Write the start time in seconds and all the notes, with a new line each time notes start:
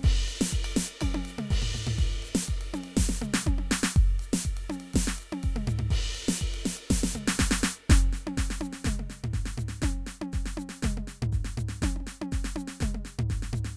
0.01 kick, hi-hat pedal, ride
0.28 hi-hat pedal, ride bell
0.41 snare
0.52 kick, hi-hat pedal, ride
0.64 ride bell
0.76 snare, hi-hat pedal
0.88 ride bell
1.01 kick, hi-hat pedal, high tom, ride bell
1.14 high tom
1.25 hi-hat pedal, ride
1.38 mid tom
1.50 kick, hi-hat pedal, ride
1.62 floor tom
1.74 floor tom, hi-hat pedal
1.87 floor tom
1.98 kick, hi-hat pedal, ride
2.22 hi-hat pedal, ride
2.35 snare
2.48 kick, hi-hat pedal, ride
2.61 ride
2.73 hi-hat pedal, high tom
2.84 ride
2.97 kick, snare, hi-hat pedal, ride
3.09 snare
3.22 hi-hat pedal, mid tom
3.34 snare
3.45 kick, hi-hat pedal, high tom
3.58 high tom
3.68 kick, snare, hi-hat pedal
3.83 snare
3.95 kick, hi-hat pedal, ride
4.19 hi-hat pedal, ride
4.33 snare
4.45 kick, hi-hat pedal, ride
4.57 ride
4.70 hi-hat pedal, high tom
4.80 ride
4.93 kick, snare, hi-hat pedal, ride
5.07 snare
5.18 hi-hat pedal, ride
5.32 high tom
5.42 kick, hi-hat pedal, ride
5.56 mid tom
5.67 floor tom, hi-hat pedal
5.79 floor tom
5.90 kick, hi-hat pedal, ride
6.15 hi-hat pedal, ride
6.28 snare
6.40 kick, hi-hat pedal, ride
6.54 ride
6.65 snare, hi-hat pedal
6.77 ride
6.90 kick, snare, hi-hat pedal, ride
7.03 snare
7.14 kick, hi-hat pedal, mid tom
7.27 snare
7.38 kick, snare, hi-hat pedal
7.51 snare
7.61 kick, snare, hi-hat pedal
7.89 kick, snare, hi-hat pedal, high tom
8.13 snare, hi-hat pedal
8.27 high tom
8.37 kick, snare, hi-hat pedal
8.50 snare
8.61 hi-hat pedal, high tom
8.73 snare
8.84 kick, snare, hi-hat pedal, mid tom
8.99 mid tom
9.10 snare, hi-hat pedal
9.24 floor tom
9.33 kick, snare, hi-hat pedal
9.45 snare
9.57 floor tom, hi-hat pedal
9.68 snare
9.82 kick, snare, hi-hat pedal, high tom
10.06 snare, hi-hat pedal
10.21 high tom
10.32 kick, snare, hi-hat pedal
10.45 snare
10.57 hi-hat pedal, high tom
10.69 snare
10.82 kick, snare, hi-hat pedal, mid tom
10.97 mid tom
11.07 snare, hi-hat pedal
11.22 floor tom
11.32 kick, snare, hi-hat pedal
11.44 snare
11.57 floor tom, hi-hat pedal
11.68 snare
11.81 kick, snare, hi-hat pedal, high tom
11.96 high tom
12.00 high tom
12.07 snare, hi-hat pedal
12.22 high tom
12.31 kick, snare, hi-hat pedal
12.44 snare
12.56 hi-hat pedal, high tom
12.67 snare
12.80 kick, snare, hi-hat pedal, mid tom
12.94 mid tom
13.05 snare, hi-hat pedal
13.19 floor tom
13.29 kick, snare, hi-hat pedal
13.42 snare
13.53 floor tom, hi-hat pedal
13.64 snare